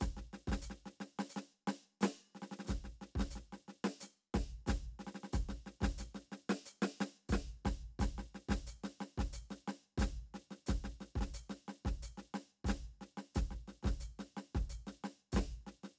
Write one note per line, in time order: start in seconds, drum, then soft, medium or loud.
0.01 kick medium
0.01 snare medium
0.01 hi-hat pedal medium
0.17 snare soft
0.34 snare soft
0.48 kick medium
0.48 snare soft
0.52 snare medium
0.62 hi-hat pedal medium
0.71 snare soft
0.86 snare soft
1.01 snare soft
1.19 snare medium
1.30 hi-hat pedal medium
1.37 snare medium
1.68 snare medium
2.01 snare soft
2.01 hi-hat pedal medium
2.03 snare loud
2.35 snare soft
2.43 snare soft
2.52 snare soft
2.60 snare soft
2.65 kick medium
2.65 snare soft
2.65 hi-hat pedal medium
2.85 snare soft
3.02 snare soft
3.16 kick medium
3.16 snare soft
3.20 snare medium
3.31 hi-hat pedal medium
3.36 snare soft
3.53 snare soft
3.69 snare soft
3.85 snare medium
4.01 snare soft
4.01 hi-hat pedal medium
4.35 kick medium
4.35 snare medium
4.67 kick medium
4.67 snare soft
4.67 hi-hat pedal medium
4.69 snare medium
5.00 snare soft
5.07 snare soft
5.15 snare soft
5.24 snare soft
5.33 kick medium
5.33 hi-hat pedal medium
5.49 snare soft
5.67 snare soft
5.81 kick medium
5.81 snare soft
5.84 snare medium
5.98 snare soft
5.98 hi-hat pedal medium
6.15 snare soft
6.32 snare soft
6.50 snare medium
6.66 hi-hat pedal medium
6.83 snare medium
7.01 snare medium
7.29 kick medium
7.29 snare medium
7.29 hi-hat pedal medium
7.66 kick medium
7.66 snare medium
8.00 kick medium
8.00 snare medium
8.00 hi-hat pedal medium
8.19 snare soft
8.35 snare soft
8.49 kick medium
8.49 snare soft
8.51 snare medium
8.67 hi-hat pedal medium
8.84 snare medium
9.01 snare soft
9.18 kick medium
9.18 snare medium
9.33 hi-hat pedal medium
9.51 snare soft
9.68 snare medium
9.98 kick medium
9.98 snare soft
9.98 hi-hat pedal medium
10.02 snare medium
10.35 snare soft
10.51 snare soft
10.67 kick medium
10.67 snare medium
10.67 hi-hat pedal medium
10.85 snare soft
11.01 snare soft
11.16 kick medium
11.16 snare soft
11.21 snare medium
11.34 hi-hat pedal medium
11.50 snare soft
11.69 snare soft
11.86 kick medium
11.86 snare soft
12.03 hi-hat pedal medium
12.18 snare soft
12.35 snare medium
12.65 kick medium
12.65 snare soft
12.65 hi-hat pedal medium
12.69 snare medium
13.02 snare soft
13.18 snare soft
13.35 kick medium
13.35 snare medium
13.35 hi-hat pedal medium
13.51 snare soft
13.68 snare soft
13.83 kick medium
13.83 snare soft
13.86 snare medium
14.01 hi-hat pedal medium
14.20 snare soft
14.37 snare soft
14.55 kick medium
14.55 snare soft
14.70 hi-hat pedal medium
14.87 snare soft
15.04 snare medium
15.33 kick medium
15.33 snare soft
15.33 hi-hat pedal medium
15.37 snare medium
15.67 snare soft
15.84 snare soft